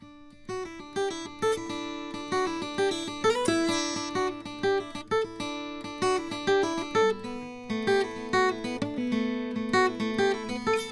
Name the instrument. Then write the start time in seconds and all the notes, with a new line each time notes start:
acoustic guitar
0.01 D4
0.50 F#4
0.64 E4
0.81 D4
0.97 G4
1.09 E4
1.27 D4
1.43 A4
1.53 E4
1.71 D4
2.15 D4
2.33 F#4
2.46 E4
2.63 D4
2.79 G4
2.90 E4
3.09 D4
3.24 B3 A#4
3.46 E4
3.70 D4
3.98 D4
4.16 F#4
4.29 E4
4.47 D4
4.64 G4
4.79 E4
4.96 D4
5.12 A4
5.24 E4
5.41 D4
5.86 D4
6.03 F#4
6.17 E4
6.33 D4
6.48 G4
6.64 E4
6.79 D4
6.96 A4
7.11 E4
7.25 B3
7.71 A3
7.88 G4
8.02 E4
8.18 B3
8.34 F#4
8.51 E4
8.65 B3
8.83 D4
8.98 B3
9.13 A3
9.57 A3
9.74 F#4
9.87 E4
10.01 A3
10.20 G4
10.32 E4
10.50 B3
10.68 A4